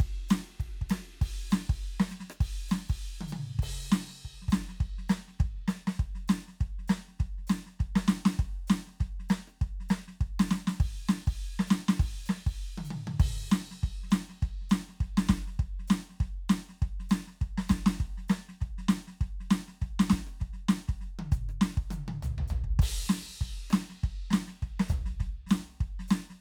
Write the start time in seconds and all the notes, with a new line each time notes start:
0.01 kick, ride
0.30 snare, hi-hat pedal, ride
0.61 kick, ride
0.82 kick
0.90 snare, hi-hat pedal, ride
0.95 kick
1.22 kick, crash
1.51 snare, hi-hat pedal
1.70 kick, crash
2.01 snare
2.10 snare, hi-hat pedal
2.21 snare
2.31 cross-stick
2.42 kick, crash
2.70 snare, hi-hat pedal
2.90 kick, crash
3.22 high tom
3.29 hi-hat pedal
3.34 high tom
3.60 kick, crash
3.93 snare, hi-hat pedal
4.09 snare
4.26 kick
4.43 snare
4.49 kick, hi-hat pedal
4.53 snare
4.70 snare
4.81 kick, snare
4.99 snare
5.10 snare, hi-hat pedal
5.29 snare
5.40 kick, snare
5.57 snare
5.69 snare, hi-hat pedal
5.88 snare
6.00 kick, snare
6.16 snare
6.29 snare, hi-hat pedal
6.49 snare
6.62 kick, snare
6.80 snare
6.89 snare, hi-hat pedal
7.09 snare
7.21 kick, snare
7.39 snare
7.48 snare, hi-hat pedal
7.67 snare
7.81 kick, snare
7.97 snare
8.08 snare, hi-hat pedal
8.26 snare
8.40 kick, snare
8.68 snare, hi-hat pedal
8.88 snare
9.01 kick, snare
9.21 snare
9.30 snare, hi-hat pedal
9.49 cross-stick
9.62 kick, snare
9.81 snare
9.90 hi-hat pedal
10.09 snare
10.22 kick, snare
10.41 snare
10.49 snare, hi-hat pedal
10.68 snare
10.81 kick, crash
11.09 snare, hi-hat pedal
11.28 kick, crash
11.60 snare
11.68 snare, hi-hat pedal
11.89 snare
12.01 kick, crash
12.27 snare, hi-hat pedal
12.48 kick, crash
12.79 high tom
12.86 hi-hat pedal
12.92 high tom
13.08 high tom
13.21 kick, crash
13.51 snare, hi-hat pedal
13.72 snare
13.84 kick, snare
14.04 snare
14.12 snare, hi-hat pedal
14.30 snare
14.43 kick, snare
14.62 snare
14.71 snare, hi-hat pedal
14.90 snare
15.02 kick, snare
15.18 snare
15.28 kick, snare, hi-hat pedal
15.48 snare
15.60 kick, snare
15.80 snare
15.89 snare, hi-hat pedal
16.11 snare
16.21 kick, snare
16.50 snare, hi-hat pedal
16.70 snare
16.83 kick, snare
17.01 snare
17.10 snare, hi-hat pedal
17.28 snare
17.42 kick, snare
17.59 snare
17.70 kick, snare, hi-hat pedal
17.87 snare
18.01 kick, snare
18.19 snare
18.30 snare, hi-hat pedal
18.50 snare
18.62 kick, snare
18.79 snare
18.90 snare, hi-hat pedal
19.09 snare
19.22 kick, snare
19.41 snare
19.51 snare, hi-hat pedal
19.69 snare
19.83 kick, snare
20.00 snare
20.10 kick, snare, hi-hat pedal
20.28 cross-stick
20.41 kick, snare
20.54 snare
20.70 snare, hi-hat pedal
20.89 kick, snare
21.02 snare
21.20 high tom
21.33 kick, snare, hi-hat pedal
21.50 cross-stick
21.62 snare
21.78 kick
21.92 hi-hat pedal, high tom
22.09 high tom
22.24 floor tom, hi-hat pedal
22.39 floor tom
22.49 floor tom, hi-hat pedal
22.65 kick
22.80 kick, crash
23.10 snare, hi-hat pedal
23.27 cross-stick, snare
23.42 kick, snare
23.71 cross-stick, snare, hi-hat pedal
23.91 snare
24.04 kick, snare
24.32 snare, hi-hat pedal
24.34 snare
24.49 snare
24.63 kick, snare
24.81 snare
24.90 kick, floor tom, hi-hat pedal
25.07 snare
25.21 kick, snare
25.48 snare, hi-hat pedal
25.52 snare
25.64 snare
25.67 snare
25.82 kick, snare
26.00 snare
26.09 snare, hi-hat pedal
26.31 snare